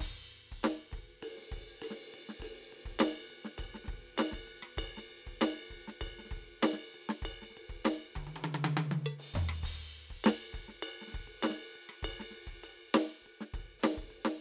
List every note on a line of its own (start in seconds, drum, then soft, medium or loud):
0.01 kick medium
0.01 hi-hat pedal medium
0.01 crash loud
0.08 kick soft
0.08 cross-stick soft
0.12 kick soft
0.52 kick soft
0.64 snare loud
0.64 hi-hat pedal medium
0.64 ride bell medium
0.92 kick soft
0.92 ride medium
1.00 kick soft
1.22 hi-hat pedal medium
1.22 ride loud
1.38 snare soft
1.41 snare soft
1.52 kick soft
1.52 ride medium
1.59 kick soft
1.82 cross-stick soft
1.82 ride loud
1.91 snare soft
2.14 ride medium
2.29 snare soft
2.40 kick soft
2.40 hi-hat pedal medium
2.40 ride loud
2.73 ride medium
2.86 kick soft
2.99 snare loud
2.99 hi-hat pedal medium
2.99 ride bell loud
3.30 ride soft
3.45 snare soft
3.58 kick soft
3.58 hi-hat pedal soft
3.58 ride bell loud
3.66 kick soft
3.75 snare soft
3.85 kick soft
3.85 snare soft
3.85 ride medium
3.95 kick soft
4.17 snare loud
4.17 hi-hat pedal medium
4.17 ride bell loud
4.32 kick soft
4.32 snare soft
4.48 hi-hat pedal soft
4.48 ride soft
4.63 cross-stick medium
4.78 kick medium
4.78 hi-hat pedal soft
4.78 ride bell loud
4.85 kick soft
4.97 snare soft
5.10 ride soft
5.27 kick soft
5.42 snare loud
5.42 hi-hat pedal medium
5.42 ride bell loud
5.71 kick soft
5.71 ride medium
5.88 snare soft
6.01 kick soft
6.01 ride bell loud
6.08 kick soft
6.19 snare soft
6.25 snare soft
6.31 kick soft
6.31 ride medium
6.38 kick soft
6.41 kick soft
6.62 snare loud
6.62 hi-hat pedal medium
6.62 ride bell loud
6.73 snare soft
6.95 ride medium
7.09 snare medium
7.22 kick soft
7.22 hi-hat pedal soft
7.22 ride bell loud
7.29 kick soft
7.42 snare soft
7.50 snare soft
7.57 ride medium
7.70 kick soft
7.75 kick soft
7.85 snare loud
7.85 hi-hat pedal medium
7.85 ride bell loud
8.16 kick soft
8.16 high tom medium
8.21 kick soft
8.21 hi-hat pedal soft
8.27 high tom medium
8.36 high tom medium
8.44 high tom loud
8.55 high tom medium
8.65 high tom loud
8.76 hi-hat pedal soft
8.76 high tom loud
8.92 high tom loud
9.04 hi-hat pedal medium
9.04 percussion loud
9.19 ride medium
9.32 kick soft
9.32 floor tom loud
9.32 hi-hat pedal soft
9.49 cross-stick medium
9.62 kick soft
9.62 hi-hat pedal medium
9.62 crash loud
9.74 cross-stick soft
10.11 kick soft
10.24 snare loud
10.24 hi-hat pedal medium
10.24 ride bell loud
10.54 kick soft
10.54 ride medium
10.60 kick soft
10.68 snare soft
10.83 hi-hat pedal soft
10.83 ride bell loud
11.02 snare soft
11.08 snare soft
11.11 kick soft
11.11 snare soft
11.11 ride medium
11.21 kick soft
11.28 ride medium
11.43 snare medium
11.43 hi-hat pedal medium
11.43 ride bell loud
11.50 snare soft
11.76 ride soft
11.89 cross-stick medium
12.03 kick soft
12.03 hi-hat pedal soft
12.03 ride bell loud
12.10 kick soft
12.20 snare soft
12.31 snare soft
12.31 ride soft
12.47 kick soft
12.63 hi-hat pedal medium
12.63 ride bell medium
12.95 snare loud
12.95 ride bell medium
13.22 kick soft
13.27 ride medium
13.41 snare soft
13.54 kick soft
13.54 ride bell medium
13.62 kick soft
13.80 hi-hat pedal medium
13.80 ride loud
13.84 snare loud
13.94 kick soft
13.94 snare soft
14.11 ride medium
14.25 snare medium